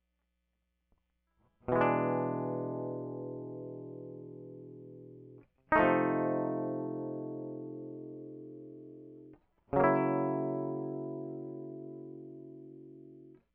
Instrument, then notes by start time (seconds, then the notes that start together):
electric guitar
1.70 B2 E3
1.76 G#3
1.81 D4
5.72 A3 D#4
5.80 F3
5.84 C3
9.74 C#3 F#3
9.80 A#3 E4